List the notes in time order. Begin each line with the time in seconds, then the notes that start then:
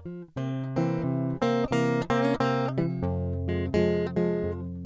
0.08 F3
0.39 C3 E3 A#3 C4
0.78 E3 A#3 C4
1.06 C3 C4
1.44 C3 A#3 C4
1.67 C4
1.74 C3 E3 A#3
2.12 C3 A#3 C4
2.25 C#4
2.42 C3 A#3 C4
2.76 G3 C4
2.80 E3
2.92 F3
3.04 F2
3.10 G#3
3.50 F3 G#3
3.76 F2 F3 G#3
4.18 F3 G#3
4.47 F2